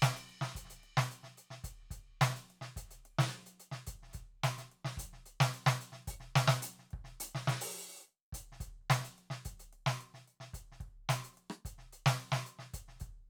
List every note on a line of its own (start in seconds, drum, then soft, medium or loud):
0.02 closed hi-hat medium
0.02 snare loud
0.13 closed hi-hat soft
0.13 snare soft
0.29 closed hi-hat soft
0.41 snare medium
0.48 snare soft
0.55 closed hi-hat medium
0.55 kick soft
0.65 snare soft
0.69 closed hi-hat medium
0.69 snare soft
0.72 snare soft
0.77 snare soft
0.79 snare soft
0.84 closed hi-hat soft
0.97 snare loud
1.11 closed hi-hat medium
1.24 snare soft
1.37 closed hi-hat medium
1.37 hi-hat pedal soft
1.51 snare soft
1.64 closed hi-hat medium
1.64 kick soft
1.72 kick soft
1.80 snare soft
1.91 closed hi-hat medium
1.91 kick soft
1.97 kick soft
2.00 kick soft
2.21 closed hi-hat medium
2.21 snare loud
2.30 snare soft
2.36 open hi-hat medium
2.50 closed hi-hat soft
2.62 snare medium
2.77 closed hi-hat medium
2.77 kick soft
2.77 snare soft
2.82 kick soft
2.82 snare soft
2.89 closed hi-hat medium
2.89 snare soft
2.93 snare soft
3.05 closed hi-hat soft
3.19 snare loud
3.28 hi-hat pedal medium
3.33 closed hi-hat soft
3.46 closed hi-hat soft
3.60 closed hi-hat medium
3.72 snare medium
3.87 closed hi-hat medium
3.87 kick soft
3.93 kick soft
4.03 snare soft
4.09 snare soft
4.13 closed hi-hat medium
4.13 kick soft
4.13 snare soft
4.16 snare soft
4.44 closed hi-hat medium
4.44 snare loud
4.58 open hi-hat medium
4.58 snare soft
4.72 closed hi-hat soft
4.85 snare medium
4.98 closed hi-hat medium
4.98 kick soft
5.04 kick soft
5.13 snare soft
5.26 closed hi-hat soft
5.41 snare loud
5.54 closed hi-hat medium
5.67 snare loud
5.81 closed hi-hat medium
5.92 snare soft
6.08 open hi-hat loud
6.08 kick soft
6.08 hi-hat pedal soft
6.14 kick soft
6.20 snare soft
6.36 snare loud
6.48 snare loud
6.59 closed hi-hat loud
6.59 hi-hat pedal soft
6.79 snare soft
6.91 kick soft
6.91 closed hi-hat soft
6.99 kick soft
7.05 snare soft
7.20 closed hi-hat loud
7.35 snare medium
7.48 snare loud
7.61 open hi-hat loud
8.00 hi-hat pedal soft
8.08 closed hi-hat soft
8.33 closed hi-hat medium
8.33 kick soft
8.38 kick soft
8.41 kick soft
8.52 snare soft
8.56 snare soft
8.60 closed hi-hat medium
8.60 kick soft
8.60 snare soft
8.67 kick soft
8.70 kick soft
8.81 kick soft
8.90 closed hi-hat medium
8.90 snare loud
9.01 closed hi-hat medium
9.01 snare soft
9.18 closed hi-hat soft
9.30 snare medium
9.45 closed hi-hat medium
9.45 kick soft
9.52 kick soft
9.60 closed hi-hat medium
9.73 closed hi-hat soft
9.87 snare loud
10.01 closed hi-hat soft
10.14 snare soft
10.28 open hi-hat soft
10.40 snare soft
10.54 closed hi-hat medium
10.54 kick soft
10.72 snare soft
10.81 kick soft
10.81 snare soft
10.81 closed hi-hat soft
11.09 closed hi-hat loud
11.09 snare loud
11.19 snare soft
11.24 open hi-hat medium
11.33 hi-hat pedal soft
11.37 closed hi-hat soft
11.50 cross-stick medium
11.65 closed hi-hat medium
11.65 kick soft
11.71 kick soft
11.78 snare soft
11.84 snare soft
11.93 closed hi-hat soft
12.06 snare loud
12.20 closed hi-hat soft
12.32 snare medium
12.36 snare medium
12.46 closed hi-hat medium
12.59 snare soft
12.74 closed hi-hat medium
12.74 kick soft
12.80 kick soft
12.88 snare soft
12.96 closed hi-hat medium
12.96 snare soft
13.02 kick soft
13.10 kick soft